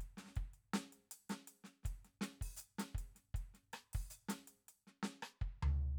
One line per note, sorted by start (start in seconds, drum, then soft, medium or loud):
0.01 closed hi-hat soft
0.18 snare soft
0.18 closed hi-hat soft
0.21 snare soft
0.24 snare soft
0.26 snare soft
0.31 snare soft
0.36 kick soft
0.36 closed hi-hat soft
0.54 closed hi-hat soft
0.74 snare medium
0.74 closed hi-hat soft
0.93 closed hi-hat soft
1.11 closed hi-hat medium
1.30 snare soft
1.30 closed hi-hat soft
1.48 closed hi-hat soft
1.64 snare soft
1.64 closed hi-hat soft
1.83 kick soft
1.83 snare soft
1.83 closed hi-hat soft
2.05 snare soft
2.05 closed hi-hat soft
2.21 snare medium
2.21 closed hi-hat soft
2.41 kick soft
2.41 open hi-hat soft
2.57 hi-hat pedal medium
2.61 closed hi-hat soft
2.79 snare medium
2.79 closed hi-hat medium
2.95 kick soft
2.95 closed hi-hat soft
3.16 snare soft
3.16 closed hi-hat soft
3.35 kick soft
3.35 closed hi-hat soft
3.54 snare soft
3.54 closed hi-hat soft
3.73 cross-stick medium
3.73 closed hi-hat soft
3.93 kick soft
3.93 open hi-hat medium
4.10 closed hi-hat soft
4.10 hi-hat pedal medium
4.29 snare medium
4.29 closed hi-hat medium
4.48 closed hi-hat soft
4.69 closed hi-hat soft
4.87 snare soft
5.03 snare medium
5.23 cross-stick medium
5.42 kick soft
5.63 floor tom medium